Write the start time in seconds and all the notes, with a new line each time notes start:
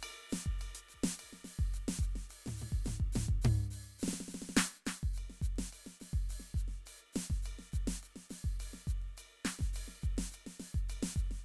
0.01 hi-hat pedal, ride bell
0.30 snare, hi-hat pedal, ride
0.45 kick, ride
0.59 hi-hat pedal, ride bell
0.75 closed hi-hat
0.89 hi-hat pedal, ride bell
0.95 kick
1.03 snare, ride
1.17 hi-hat pedal, ride bell
1.23 kick
1.33 snare
1.45 snare, hi-hat pedal, ride
1.59 kick, ride
1.68 kick
1.74 hi-hat pedal, ride
1.89 snare
1.99 kick, hi-hat pedal
2.04 ride
2.16 snare
2.30 hi-hat pedal, ride
2.47 snare, floor tom
2.57 hi-hat pedal
2.62 floor tom
2.73 kick
2.85 snare, floor tom, hi-hat pedal
3.00 kick
3.13 snare, floor tom, hi-hat pedal
3.29 kick
3.42 floor tom, hi-hat pedal
3.71 hi-hat pedal
3.99 hi-hat pedal
4.03 snare
4.08 snare
4.14 snare
4.21 snare
4.28 snare, hi-hat pedal
4.35 snare
4.42 snare
4.49 snare
4.57 snare, hi-hat pedal
4.86 snare, hi-hat pedal
5.04 kick
5.14 hi-hat pedal
5.18 ride bell
5.30 snare
5.42 kick, hi-hat pedal, ride
5.56 snare, ride
5.72 hi-hat pedal, ride bell
5.87 snare
6.00 snare, hi-hat pedal, ride
6.14 kick, ride
6.29 hi-hat pedal, ride
6.40 snare
6.55 kick, hi-hat pedal, ride
6.68 snare, ride
6.86 hi-hat pedal, ride bell
7.13 snare, hi-hat pedal, ride
7.30 kick, snare
7.43 hi-hat pedal, ride bell
7.59 snare
7.73 kick, hi-hat pedal, ride
7.88 snare, ride
8.03 hi-hat pedal, ride
8.16 snare
8.30 snare, hi-hat pedal, ride
8.45 kick, ride
8.60 hi-hat pedal, ride bell
8.74 snare
8.87 kick, hi-hat pedal, ride
9.02 ride
9.17 hi-hat pedal, ride bell
9.45 snare, hi-hat pedal, ride
9.59 kick, snare
9.74 hi-hat pedal, ride bell
9.88 snare
10.02 kick, hi-hat pedal, ride
10.18 snare, ride
10.32 hi-hat pedal, ride bell
10.47 snare
10.60 snare, hi-hat pedal, ride
10.75 kick, ride
10.89 hi-hat pedal, ride bell
11.03 snare
11.17 kick, hi-hat pedal, ride
11.31 snare